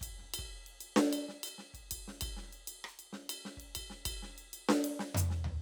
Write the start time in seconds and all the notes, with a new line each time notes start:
0.01 kick, hi-hat pedal, ride bell
0.19 snare
0.23 snare
0.26 snare
0.29 snare
0.32 snare, ride bell
0.39 kick
0.67 ride
0.81 ride bell
0.96 snare
1.13 ride bell
1.29 snare
1.43 hi-hat pedal, ride bell
1.58 snare
1.74 kick, ride bell
1.91 kick, ride bell
2.08 snare
2.21 kick, ride bell
2.28 kick
2.37 snare
2.42 snare
2.46 snare
2.49 snare, ride bell
2.68 ride bell
2.84 cross-stick
2.88 hi-hat pedal
2.99 ride bell
3.13 snare
3.29 hi-hat pedal, ride bell
3.45 snare
3.57 kick, ride
3.75 kick, ride bell
3.90 snare
4.06 kick, ride bell
4.23 snare
4.28 snare
4.35 cross-stick, ride bell
4.53 ride bell
4.69 snare
4.84 ride
5.00 snare
5.15 hi-hat pedal, mid tom
5.30 snare
5.45 floor tom